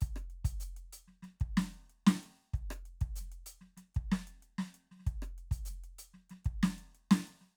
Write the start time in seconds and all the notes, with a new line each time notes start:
0.01 closed hi-hat, kick
0.16 cross-stick
0.30 closed hi-hat
0.45 closed hi-hat, kick
0.60 hi-hat pedal
0.77 closed hi-hat
0.93 closed hi-hat
1.08 snare
1.23 snare, closed hi-hat
1.40 kick, closed hi-hat
1.57 snare
1.75 closed hi-hat
1.90 closed hi-hat
2.07 snare
2.23 closed hi-hat
2.54 kick, closed hi-hat
2.71 cross-stick
2.86 closed hi-hat
3.01 kick, open hi-hat
3.16 hi-hat pedal
3.20 snare
3.32 closed hi-hat
3.46 closed hi-hat
3.61 snare
3.77 snare, closed hi-hat
3.95 kick, closed hi-hat
4.12 snare
4.27 closed hi-hat
4.43 closed hi-hat
4.59 snare
4.75 closed hi-hat
4.91 snare
4.96 snare
5.00 snare
5.07 kick, closed hi-hat
5.22 cross-stick
5.38 closed hi-hat
5.51 open hi-hat, kick
5.66 hi-hat pedal
5.70 snare
5.84 closed hi-hat
5.99 closed hi-hat
6.14 snare
6.30 snare, closed hi-hat
6.45 kick, closed hi-hat
6.63 snare
6.78 closed hi-hat
6.95 closed hi-hat
7.11 snare
7.27 closed hi-hat
7.41 snare